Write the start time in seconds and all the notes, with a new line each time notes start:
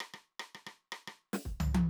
0.00 cross-stick
0.14 cross-stick
0.40 cross-stick
0.55 cross-stick
0.67 cross-stick
0.92 cross-stick
1.07 cross-stick
1.33 snare
1.45 kick
1.60 floor tom
1.75 high tom